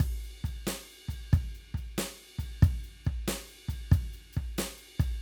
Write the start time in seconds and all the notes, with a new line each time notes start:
0.00 kick, ride
0.24 ride
0.44 kick, ride
0.67 snare, ride
0.90 ride
1.09 kick, ride
1.33 kick, ride
1.55 ride
1.74 kick, ride
1.98 snare, ride
2.39 kick, ride
2.63 kick, ride
2.84 ride
3.05 kick, ride
3.28 snare, ride
3.49 ride
3.69 kick, ride
3.92 kick, ride
4.13 ride
4.33 kick, ride
4.58 snare, ride
4.78 ride
5.00 kick, ride